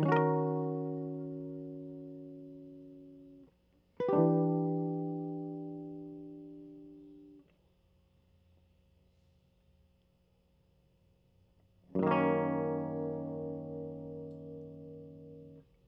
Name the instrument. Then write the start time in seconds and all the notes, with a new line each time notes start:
electric guitar
0.00 D#3 F#3
0.06 C#4 F#4
0.12 A#4
0.17 D5
4.00 B4
4.09 G4
4.13 D4
4.19 E3
11.97 F#2
12.01 A2 D#3
12.07 A#3
12.11 C#4